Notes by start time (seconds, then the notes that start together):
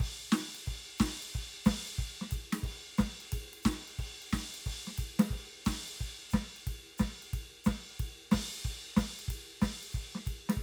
0.00 kick, ride
0.32 snare, hi-hat pedal, ride
0.55 ride
0.67 kick, ride
0.99 kick, snare, hi-hat pedal, ride
1.23 ride
1.35 kick, ride
1.65 kick, snare, hi-hat pedal, ride
1.88 ride
1.99 kick, ride
2.22 snare
2.31 kick, hi-hat pedal, ride
2.53 snare, ride
2.64 kick, ride
2.98 kick, snare, hi-hat pedal, ride
3.21 ride
3.33 kick, ride
3.54 ride
3.63 kick, snare, hi-hat pedal, ride
3.88 ride
3.99 kick, ride
4.23 ride
4.30 kick, snare, hi-hat pedal, ride
4.55 ride
4.67 kick, ride
4.88 snare
4.98 kick, hi-hat pedal, ride
5.20 snare, ride
5.31 kick, ride
5.66 kick, snare, hi-hat pedal, ride
5.88 ride
6.00 kick, ride
6.31 kick, snare, hi-hat pedal, ride
6.57 ride
6.67 kick, ride
6.98 kick, snare, hi-hat pedal, ride
7.23 ride
7.34 kick, ride
7.65 kick, snare, hi-hat pedal, ride
7.90 ride
8.00 kick, ride
8.32 kick, snare, hi-hat pedal, ride
8.55 ride
8.65 kick, ride
8.97 kick, snare, hi-hat pedal, ride
9.20 ride
9.29 kick, ride
9.62 kick, snare, hi-hat pedal, ride
9.83 ride
9.93 kick, hi-hat pedal, ride
10.15 snare
10.26 kick, hi-hat pedal, ride
10.50 snare, ride
10.57 kick